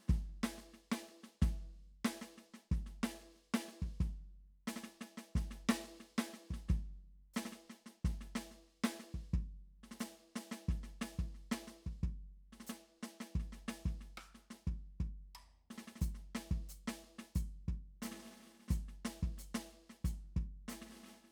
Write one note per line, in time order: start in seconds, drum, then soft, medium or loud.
0.01 snare soft
0.09 kick medium
0.09 snare soft
0.44 snare medium
0.58 snare soft
0.74 snare soft
0.92 snare medium
1.09 snare soft
1.24 snare soft
1.42 kick medium
1.42 snare soft
2.05 snare medium
2.22 snare soft
2.38 snare soft
2.54 snare soft
2.72 kick medium
2.72 snare soft
2.87 snare soft
3.04 snare medium
3.21 snare soft
3.36 snare soft
3.54 snare medium
3.69 snare soft
3.82 kick soft
4.01 kick medium
4.01 snare soft
4.68 snare medium
4.68 hi-hat pedal medium
4.76 snare soft
4.84 snare soft
5.01 snare soft
5.18 snare soft
5.36 kick medium
5.36 snare soft
5.51 snare soft
5.69 snare loud
5.84 snare soft
6.00 snare soft
6.18 snare medium
6.34 snare soft
6.51 kick soft
6.51 snare soft
6.69 kick medium
6.69 snare soft
7.34 snare medium
7.34 hi-hat pedal soft
7.46 snare soft
7.53 snare soft
7.70 snare soft
7.86 snare soft
8.05 kick medium
8.05 snare soft
8.21 snare soft
8.36 snare medium
8.51 snare soft
8.68 snare soft
8.84 snare medium
9.00 snare soft
9.15 kick soft
9.34 kick medium
9.84 snare soft
9.92 snare soft
10.00 snare medium
10.00 hi-hat pedal medium
10.36 snare medium
10.52 snare medium
10.69 kick medium
10.69 snare soft
10.84 snare soft
11.02 snare medium
11.19 kick soft
11.19 snare soft
11.35 snare soft
11.52 snare medium
11.68 snare soft
11.87 kick soft
12.04 kick medium
12.53 snare soft
12.60 snare soft
12.67 snare medium
12.67 hi-hat pedal medium
13.03 snare medium
13.21 snare soft
13.36 kick medium
13.40 snare soft
13.53 snare soft
13.68 snare medium
13.86 kick medium
13.86 snare soft
14.01 snare soft
14.18 cross-stick medium
14.35 snare soft
14.51 snare soft
14.68 kick soft
15.01 kick soft
15.35 floor tom medium
15.71 snare soft
15.78 snare soft
15.88 snare soft
15.96 snare soft
16.02 kick medium
16.02 hi-hat pedal medium
16.15 snare soft
16.35 snare medium
16.52 kick medium
16.69 hi-hat pedal medium
16.88 snare medium
17.04 snare soft
17.19 snare soft
17.36 kick medium
17.36 hi-hat pedal medium
17.69 kick soft
18.02 snare soft
18.02 hi-hat pedal medium
18.05 snare soft
18.12 snare soft
18.14 snare soft
18.19 snare soft
18.23 snare soft
18.23 hi-hat pedal soft
18.26 snare soft
18.28 snare soft
18.31 snare soft
18.33 snare soft
18.37 snare soft
18.40 snare soft
18.43 snare soft
18.45 snare soft
18.50 snare soft
18.54 snare soft
18.57 snare soft
18.62 snare soft
18.68 kick medium
18.68 snare soft
18.68 hi-hat pedal medium
18.89 snare soft
19.05 snare medium
19.23 kick medium
19.23 snare soft
19.38 snare soft
19.38 hi-hat pedal medium
19.55 snare medium
19.73 snare soft
19.90 snare soft
20.05 kick medium
20.05 snare soft
20.05 hi-hat pedal medium
20.37 kick medium
20.68 snare soft
20.68 hi-hat pedal medium
20.72 snare soft
20.87 snare soft
20.90 snare soft
20.92 snare soft
20.95 snare soft
20.97 snare soft
21.00 snare soft
21.04 snare soft
21.06 snare soft
21.08 snare soft
21.10 snare soft
21.14 snare soft
21.18 snare soft
21.21 snare soft
21.24 snare soft
21.27 snare soft